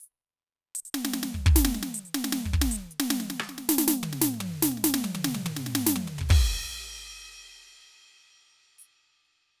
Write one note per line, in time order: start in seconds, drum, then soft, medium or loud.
0.00 hi-hat pedal medium
0.75 closed hi-hat loud
0.94 snare loud
1.05 snare loud
1.13 snare loud
1.23 snare medium
1.34 kick medium
1.46 kick loud
1.56 snare loud
1.65 snare loud
1.74 snare medium
1.83 snare medium
1.94 closed hi-hat loud
2.05 closed hi-hat medium
2.14 snare loud
2.24 snare loud
2.32 snare loud
2.45 kick medium
2.53 kick medium
2.61 snare loud
2.71 closed hi-hat loud
2.91 closed hi-hat medium
3.00 snare loud
3.10 snare loud
3.20 snare medium
3.30 snare medium
3.40 cross-stick loud
3.49 snare medium
3.58 snare medium
3.69 snare loud
3.78 snare loud
3.88 snare loud
4.03 mid tom loud
4.12 snare medium
4.21 snare loud
4.34 snare soft
4.40 high tom loud
4.62 snare loud
4.62 hi-hat pedal medium
4.71 snare soft
4.77 snare soft
4.84 snare loud
4.94 snare loud
5.04 high tom loud
5.15 high tom loud
5.24 snare loud
5.34 high tom loud
5.46 mid tom loud
5.56 snare medium
5.66 snare medium
5.75 snare loud
5.86 snare loud
5.96 high tom loud
6.07 mid tom medium
6.18 kick medium
6.18 floor tom medium
6.29 kick loud
6.29 crash loud
6.51 crash soft
8.78 hi-hat pedal medium
9.25 closed hi-hat soft